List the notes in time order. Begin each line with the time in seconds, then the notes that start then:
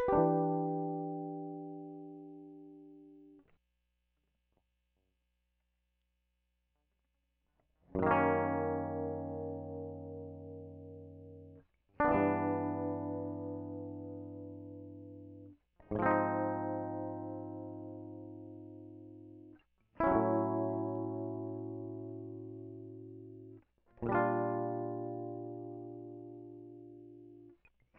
0.00 B4
0.09 G4
0.13 D4
0.19 E3
7.97 F#2
8.01 A2 D#3
8.07 A#3
8.11 C#4
12.00 D4
12.05 E3 B3
12.17 G2
15.93 G#2
16.00 F3 C4
16.06 D#4
16.11 G4
20.01 C#4 E4
20.07 F#3
20.17 A2
24.04 A#2 D3
24.09 G3 D4
24.15 F4